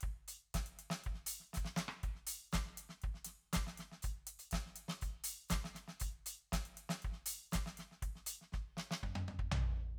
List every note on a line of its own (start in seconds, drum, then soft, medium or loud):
0.01 kick medium
0.01 closed hi-hat soft
0.28 closed hi-hat medium
0.54 kick medium
0.54 snare medium
0.54 closed hi-hat medium
0.66 closed hi-hat soft
0.79 closed hi-hat soft
0.90 snare medium
1.04 kick soft
1.04 closed hi-hat soft
1.14 snare soft
1.27 open hi-hat medium
1.40 snare soft
1.54 kick medium
1.54 snare soft
1.54 hi-hat pedal medium
1.65 snare soft
1.77 snare medium
1.88 cross-stick medium
2.03 kick medium
2.03 closed hi-hat soft
2.15 snare soft
2.27 open hi-hat medium
2.52 kick medium
2.52 snare medium
2.52 closed hi-hat soft
2.52 hi-hat pedal soft
2.66 snare soft
2.78 closed hi-hat medium
2.89 snare soft
3.02 kick medium
3.02 closed hi-hat soft
3.15 snare soft
3.25 snare soft
3.25 closed hi-hat medium
3.53 kick medium
3.53 snare medium
3.53 closed hi-hat medium
3.67 snare soft
3.78 snare soft
3.78 closed hi-hat soft
3.92 snare soft
4.03 closed hi-hat soft
4.03 kick medium
4.15 snare soft
4.27 closed hi-hat medium
4.39 closed hi-hat soft
4.51 kick soft
4.51 snare medium
4.51 closed hi-hat medium
4.66 snare soft
4.76 closed hi-hat medium
4.89 snare medium
5.02 closed hi-hat soft
5.02 kick soft
5.24 open hi-hat loud
5.49 kick medium
5.49 snare medium
5.49 closed hi-hat medium
5.49 hi-hat pedal soft
5.65 snare soft
5.75 snare soft
5.75 closed hi-hat soft
5.88 snare soft
6.00 closed hi-hat medium
6.00 kick soft
6.26 closed hi-hat medium
6.52 kick medium
6.52 snare medium
6.52 closed hi-hat medium
6.66 closed hi-hat soft
6.77 closed hi-hat soft
6.90 snare medium
7.02 kick soft
7.02 closed hi-hat soft
7.13 snare soft
7.26 open hi-hat loud
7.52 kick medium
7.52 snare medium
7.52 closed hi-hat medium
7.52 hi-hat pedal soft
7.66 snare soft
7.77 snare soft
7.77 closed hi-hat soft
7.92 snare soft
8.03 kick soft
8.03 closed hi-hat soft
8.16 snare soft
8.27 closed hi-hat medium
8.41 snare soft
8.53 kick soft
8.53 snare soft
8.77 snare medium
8.91 snare medium
9.03 kick soft
9.03 high tom medium
9.16 high tom medium
9.28 high tom medium
9.39 kick medium
9.52 floor tom loud